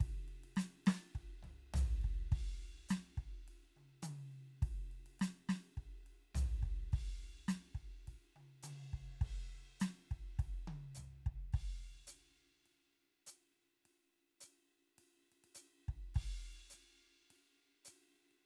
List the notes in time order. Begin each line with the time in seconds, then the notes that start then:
0.01 kick, ride
0.29 ride
0.44 ride
0.57 snare, hi-hat pedal, ride
0.87 snare, ride
1.16 kick, ride
1.43 floor tom, ride
1.74 floor tom, hi-hat pedal, ride
2.02 kick, ride
2.32 kick, crash
2.90 snare, hi-hat pedal, ride
3.18 kick, ride
3.49 ride
3.77 high tom
4.03 hi-hat pedal, high tom, ride
4.63 kick, ride
4.92 ride
5.07 ride
5.20 snare, hi-hat pedal, ride
5.50 snare, ride
5.78 kick
6.07 ride
6.35 floor tom, hi-hat pedal, ride
6.63 kick, ride
6.93 kick, crash
7.49 snare, hi-hat pedal, ride
7.75 kick, ride
8.08 kick, ride
8.37 high tom
8.63 hi-hat pedal, high tom, ride
8.94 kick
9.22 kick, crash
9.81 snare, hi-hat pedal, ride
10.12 kick, ride
10.39 kick, ride
10.68 high tom
10.95 floor tom, hi-hat pedal
11.27 kick
11.53 kick, crash
12.08 hi-hat pedal, ride
12.66 ride
13.27 hi-hat pedal, ride
13.86 ride
14.41 hi-hat pedal, ride
14.99 ride
15.33 ride
15.45 ride
15.55 hi-hat pedal, ride
15.89 kick
16.15 kick, crash
16.71 hi-hat pedal, ride
17.31 ride
17.86 hi-hat pedal, ride
18.15 ride
18.32 ride